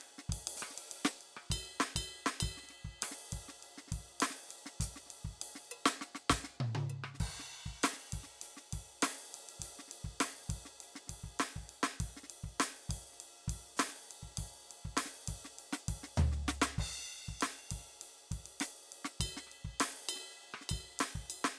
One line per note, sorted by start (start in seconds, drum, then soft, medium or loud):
0.01 ride soft
0.18 snare soft
0.29 kick soft
0.29 ride loud
0.37 kick soft
0.37 snare soft
0.47 ride loud
0.56 hi-hat pedal loud
0.62 cross-stick medium
0.70 snare soft
0.78 ride medium
0.91 ride medium
1.05 snare loud
1.19 hi-hat pedal soft
1.19 ride soft
1.37 cross-stick medium
1.50 kick soft
1.50 hi-hat pedal soft
1.50 ride bell loud
1.57 kick soft
1.65 ride soft
1.80 snare loud
1.96 kick soft
1.96 ride bell loud
2.26 snare medium
2.40 kick medium
2.40 hi-hat pedal soft
2.40 ride bell loud
2.50 kick soft
2.57 snare soft
2.63 snare soft
2.69 snare soft
2.69 ride soft
2.85 kick soft
3.02 cross-stick medium
3.02 hi-hat pedal medium
3.02 ride loud
3.11 snare soft
3.32 kick soft
3.32 ride medium
3.39 kick soft
3.48 snare soft
3.63 ride soft
3.77 snare soft
3.92 kick soft
3.92 ride medium
3.98 kick soft
4.20 snare loud
4.20 hi-hat pedal medium
4.20 ride loud
4.30 snare soft
4.48 hi-hat pedal soft
4.48 ride medium
4.66 snare medium
4.80 kick soft
4.80 hi-hat pedal loud
4.80 ride medium
4.87 kick soft
4.96 snare soft
5.10 ride medium
5.17 snare soft
5.25 kick soft
5.25 snare soft
5.30 kick soft
5.42 ride loud
5.55 snare soft
5.71 percussion loud
5.86 snare loud
6.01 snare medium
6.15 snare medium
6.30 kick soft
6.30 snare loud
6.30 hi-hat pedal medium
6.44 snare medium
6.60 mid tom loud
6.75 high tom medium
6.90 percussion medium
7.04 cross-stick medium
7.14 snare soft
7.19 kick medium
7.19 hi-hat pedal soft
7.19 crash medium
7.28 kick soft
7.34 kick soft
7.39 snare soft
7.52 snare soft
7.66 kick soft
7.71 kick soft
7.83 snare loud
7.83 hi-hat pedal medium
7.83 ride loud
7.93 snare soft
8.12 kick soft
8.12 ride medium
8.19 kick soft
8.23 snare soft
8.42 hi-hat pedal medium
8.42 ride medium
8.57 snare soft
8.73 kick soft
8.73 ride medium
8.79 kick soft
9.02 snare loud
9.02 hi-hat pedal soft
9.02 ride loud
9.34 snare soft
9.34 ride medium
9.42 snare soft
9.46 snare soft
9.46 ride medium
9.60 kick soft
9.60 hi-hat pedal soft
9.60 ride medium
9.79 snare soft
9.88 snare soft
9.88 ride medium
10.04 kick soft
10.20 snare loud
10.20 hi-hat pedal medium
10.20 ride loud
10.35 snare soft
10.49 kick soft
10.49 ride medium
10.56 kick soft
10.65 snare soft
10.80 hi-hat pedal soft
10.80 ride medium
10.95 snare soft
11.07 kick soft
11.07 snare soft
11.07 ride medium
11.24 kick soft
11.39 snare loud
11.39 hi-hat pedal medium
11.39 ride medium
11.53 kick soft
11.53 snare soft
11.61 kick soft
11.69 hi-hat pedal soft
11.69 ride soft
11.83 snare loud
11.98 kick soft
11.98 hi-hat pedal soft
11.98 ride medium
12.07 kick soft
12.17 snare soft
12.23 snare soft
12.30 ride medium
12.44 kick soft
12.60 snare loud
12.60 hi-hat pedal loud
12.60 ride medium
12.71 snare soft
12.89 kick soft
12.89 ride medium
12.96 kick soft
13.12 snare soft
13.20 snare soft
13.20 ride medium
13.48 kick soft
13.48 ride medium
13.55 kick soft
13.77 snare loud
13.77 hi-hat pedal medium
13.77 ride loud
13.89 snare soft
14.11 ride medium
14.23 kick soft
14.31 snare soft
14.37 kick soft
14.37 hi-hat pedal soft
14.37 ride medium
14.44 kick soft
14.71 ride medium
14.85 kick soft
14.97 snare medium
14.97 hi-hat pedal medium
14.97 ride loud
15.05 snare soft
15.28 kick soft
15.28 ride medium
15.34 kick soft
15.45 snare soft
15.59 ride medium
15.73 snare loud
15.88 kick soft
15.88 ride medium
15.94 kick soft
16.03 snare soft
16.16 floor tom loud
16.16 hi-hat pedal medium
16.32 snare soft
16.48 snare loud
16.62 snare loud
16.73 snare soft
16.78 kick medium
16.78 hi-hat pedal soft
16.78 crash medium
16.89 kick soft
16.98 snare soft
17.28 kick soft
17.41 snare medium
17.41 hi-hat pedal medium
17.41 ride medium
17.71 kick soft
17.71 ride medium
17.77 kick soft
17.77 snare soft
18.01 ride medium
18.31 kick soft
18.31 snare soft
18.31 ride medium
18.38 kick soft
18.46 ride medium
18.60 snare loud
18.60 hi-hat pedal loud
18.60 ride loud
18.92 ride medium
19.05 snare medium
19.19 kick soft
19.19 hi-hat pedal soft
19.19 ride bell loud
19.26 kick soft
19.37 snare medium
19.47 cross-stick soft
19.52 ride soft
19.65 kick soft
19.70 kick soft
19.80 snare loud
19.80 hi-hat pedal medium
19.80 ride loud
20.09 ride bell loud
20.16 snare soft
20.39 ride soft
20.54 cross-stick medium
20.61 snare soft
20.69 kick soft
20.69 ride bell loud
20.78 kick soft
20.99 snare medium
20.99 hi-hat pedal medium
20.99 ride medium
21.14 kick soft
21.14 snare soft
21.21 kick soft
21.29 hi-hat pedal soft
21.29 ride bell medium
21.44 snare loud